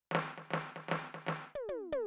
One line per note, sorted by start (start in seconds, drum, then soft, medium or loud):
0.11 snare medium
0.15 snare loud
0.38 snare soft
0.51 snare soft
0.53 snare medium
0.76 snare soft
0.88 snare soft
0.91 snare medium
1.14 snare soft
1.27 snare soft
1.28 snare medium
1.55 high tom medium
1.69 high tom medium
1.92 high tom loud